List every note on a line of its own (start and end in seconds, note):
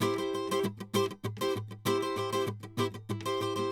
0.01 0.52 E4
0.01 0.17 G4
0.01 0.15 C5
0.17 0.51 G4
0.17 0.34 C5
0.34 0.50 C5
0.52 0.73 E4
0.52 0.72 G4
0.52 0.62 C5
0.95 1.11 E4
0.95 1.08 G4
0.95 1.08 C5
1.42 1.64 E4
1.42 1.54 G4
1.42 1.63 C5
1.86 2.04 E4
1.86 2.01 G4
1.86 2.00 C5
2.02 2.17 E4
2.02 2.17 G4
2.02 2.17 C5
2.17 2.34 E4
2.17 2.34 G4
2.17 2.32 C5
2.34 2.53 E4
2.34 2.54 G4
2.34 2.47 C5
2.65 2.76 E4
2.78 2.92 E4
2.78 2.90 G4
2.78 2.90 C5
3.10 3.27 E4
3.26 3.41 E4
3.26 3.40 G4
3.26 3.41 C5
3.41 3.58 E4
3.41 3.57 G4
3.41 3.54 C5
3.58 3.72 E4
3.58 3.72 G4